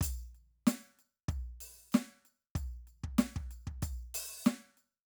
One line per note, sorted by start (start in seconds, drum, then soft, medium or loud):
0.01 kick medium
0.01 percussion loud
0.35 percussion soft
0.67 snare loud
0.67 percussion loud
0.99 percussion soft
1.29 kick medium
1.29 percussion soft
1.61 percussion medium
1.92 snare loud
1.92 percussion medium
1.95 percussion medium
2.25 percussion soft
2.56 kick medium
2.56 percussion medium
2.87 percussion soft
3.04 kick medium
3.19 snare loud
3.19 percussion loud
3.36 kick medium
3.51 percussion soft
3.67 kick medium
3.83 kick medium
3.83 percussion medium
4.15 percussion loud
4.45 snare loud
4.45 percussion medium
4.47 percussion medium
4.77 percussion soft